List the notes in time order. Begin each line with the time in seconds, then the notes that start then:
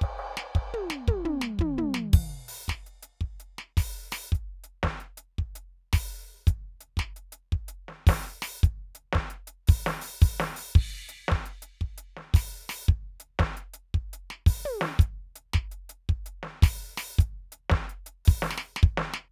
0.01 kick, hi-hat pedal, crash
0.18 crash
0.37 snare
0.55 kick, crash
0.73 mid tom
0.90 snare
1.08 kick, mid tom
1.24 floor tom
1.41 snare
1.59 kick, floor tom
1.77 kick, floor tom
1.94 snare
2.13 kick, ride
2.48 open hi-hat
2.66 kick, snare, hi-hat pedal
2.86 closed hi-hat
3.03 closed hi-hat
3.21 kick
3.40 closed hi-hat
3.58 snare
3.77 open hi-hat, kick, snare
4.12 open hi-hat, snare
4.29 kick, hi-hat pedal
4.34 closed hi-hat
4.64 closed hi-hat
4.83 kick, snare
5.00 closed hi-hat
5.17 closed hi-hat
5.38 kick
5.55 closed hi-hat
5.93 open hi-hat, kick, snare
6.45 closed hi-hat, kick, hi-hat pedal
6.80 closed hi-hat
6.97 kick, snare
7.16 closed hi-hat
7.32 closed hi-hat
7.52 kick
7.68 closed hi-hat
7.88 snare
8.07 open hi-hat, kick, snare
8.42 open hi-hat, snare
8.60 closed hi-hat, kick, hi-hat pedal
8.95 closed hi-hat
9.13 kick, snare
9.30 closed hi-hat
9.47 closed hi-hat
9.67 open hi-hat, kick
9.86 snare
10.01 open hi-hat
10.21 open hi-hat, kick
10.40 snare
10.56 open hi-hat
10.72 kick, hi-hat pedal, crash
11.09 closed hi-hat
11.28 kick, snare
11.46 closed hi-hat
11.62 closed hi-hat
11.81 kick
11.98 closed hi-hat
12.17 snare
12.34 open hi-hat, kick, snare
12.69 open hi-hat, snare
12.86 kick, hi-hat pedal
13.20 closed hi-hat
13.39 kick, snare
13.57 closed hi-hat
13.74 closed hi-hat
13.94 kick
14.13 closed hi-hat
14.30 snare
14.46 open hi-hat, kick
14.65 high tom
14.81 snare
14.97 closed hi-hat, kick, hi-hat pedal
15.35 closed hi-hat
15.53 kick, snare
15.71 closed hi-hat
15.89 closed hi-hat
16.09 kick
16.26 closed hi-hat
16.43 snare
16.62 open hi-hat, kick, snare
16.97 open hi-hat, snare
17.15 kick, hi-hat pedal
17.20 closed hi-hat
17.52 closed hi-hat
17.70 kick, snare
17.89 closed hi-hat
18.06 closed hi-hat
18.25 open hi-hat, kick
18.42 snare
18.51 snare
18.58 snare
18.76 snare
18.83 kick
18.97 snare
19.14 snare